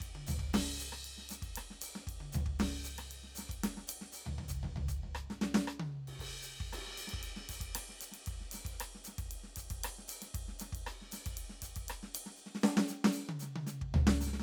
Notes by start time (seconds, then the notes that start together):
0.01 kick, ride
0.16 high tom
0.27 floor tom, hi-hat pedal
0.40 kick
0.54 snare, crash
0.80 hi-hat pedal, ride
0.93 cross-stick
1.05 ride
1.18 snare
1.30 snare, hi-hat pedal, ride
1.43 kick, ride
1.55 cross-stick, hi-hat pedal, ride
1.71 snare
1.82 hi-hat pedal, ride
1.96 snare
2.07 kick, ride
2.21 high tom
2.33 floor tom, hi-hat pedal
2.46 kick
2.60 snare, crash
2.85 hi-hat pedal, ride
2.99 cross-stick, ride
3.12 ride
3.24 snare
3.36 snare, hi-hat pedal, ride
3.50 kick, ride
3.64 snare, ride
3.78 snare
3.88 hi-hat pedal, ride
4.02 snare
4.13 hi-hat pedal, ride
4.27 floor tom, high tom
4.39 floor tom, high tom
4.49 kick, hi-hat pedal
4.64 floor tom, high tom
4.77 floor tom, high tom
4.89 kick, hi-hat pedal
5.04 floor tom
5.15 cross-stick
5.31 snare
5.42 snare
5.55 snare
5.68 cross-stick
5.80 high tom
6.08 kick, ride
6.20 kick, crash
6.43 hi-hat pedal
6.61 kick
6.73 cross-stick, ride
6.87 snare
6.98 hi-hat pedal, ride
7.08 snare, ride
7.14 kick
7.23 ride
7.37 snare
7.50 kick, hi-hat pedal, ride
7.61 kick, ride
7.76 cross-stick, ride
7.90 snare
8.01 hi-hat pedal, ride
8.12 snare, ride
8.27 kick, ride
8.41 snare
8.52 snare, hi-hat pedal, ride
8.65 kick, ride
8.81 cross-stick, ride
8.95 snare
9.05 snare, hi-hat pedal, ride
9.19 kick, ride
9.32 ride
9.44 snare
9.57 kick, hi-hat pedal, ride
9.71 kick, ride
9.84 cross-stick, ride
9.99 snare
10.09 hi-hat pedal, ride
10.22 snare, ride
10.35 kick, ride
10.49 snare
10.60 snare, hi-hat pedal, ride
10.73 kick, ride
10.87 cross-stick, ride
11.02 snare
11.12 snare, hi-hat pedal, ride
11.27 kick, ride
11.38 ride
11.50 snare
11.63 kick, hi-hat pedal, ride
11.77 kick, ride
11.89 cross-stick, ride
12.04 snare
12.15 hi-hat pedal, ride
12.27 snare
12.37 hi-hat pedal
12.47 snare
12.55 snare
12.62 snare, hi-hat pedal
12.78 snare
12.89 snare, hi-hat pedal
13.05 snare
13.13 hi-hat pedal
13.19 snare
13.29 high tom
13.40 snare, hi-hat pedal
13.56 high tom
13.67 snare, hi-hat pedal
13.82 kick
13.95 floor tom, hi-hat pedal
14.07 snare
14.21 snare, hi-hat pedal
14.27 snare
14.34 snare
14.40 snare